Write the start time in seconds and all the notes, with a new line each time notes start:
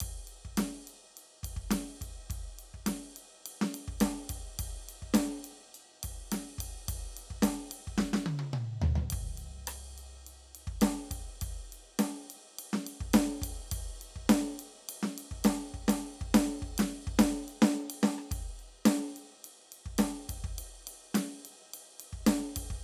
0.00 kick, ride
0.27 ride
0.45 kick
0.57 snare, ride
0.87 ride
1.17 ride
1.43 kick, ride
1.56 kick
1.70 snare, ride
2.01 kick, ride
2.30 kick, ride
2.59 ride
2.74 kick
2.82 kick
2.86 snare, ride
3.16 ride
3.46 ride
3.61 snare
3.74 ride
3.88 kick
4.00 snare, ride
4.29 kick, ride
4.59 kick, ride
4.89 ride
5.02 kick
5.10 kick, snare
5.15 ride
5.44 ride
5.74 ride bell
6.03 kick, ride
6.32 snare, ride
6.58 kick, ride
6.88 kick, ride
7.17 ride
7.30 kick
7.42 snare, ride
7.71 ride
7.87 kick
7.98 snare
8.13 snare
8.26 open hi-hat, high tom
8.39 high tom
8.53 mid tom
8.81 floor tom
8.95 floor tom
9.10 kick, ride
9.37 ride
9.67 cross-stick, ride
9.98 ride
10.26 ride
10.55 ride
10.67 kick
10.81 snare, ride
11.11 kick, ride
11.41 kick, ride
11.72 ride
11.99 snare, ride
12.30 ride
12.58 ride
12.73 snare
12.86 ride
13.00 kick
13.13 snare, ride
13.41 kick, ride
13.71 kick, ride
14.01 ride
14.15 kick
14.29 snare, ride
14.59 ride
14.89 ride
15.03 snare
15.18 ride
15.31 kick
15.44 snare, ride
15.74 kick
15.88 snare, ride
16.21 kick
16.34 snare, ride
16.62 kick
16.78 snare, ride
17.07 kick
17.19 snare, ride
17.48 ride
17.62 snare
17.90 ride
18.03 snare
18.18 cross-stick
18.31 kick, ride
18.59 ride
18.85 snare, ride
19.16 ride
19.44 ride
19.72 ride
19.85 kick
19.98 snare, ride
20.29 kick, ride
20.44 kick
20.58 ride
20.87 ride
21.14 snare, ride
21.45 ride
21.73 ride
22.00 ride
22.13 kick
22.26 snare, ride
22.56 kick, ride
22.70 kick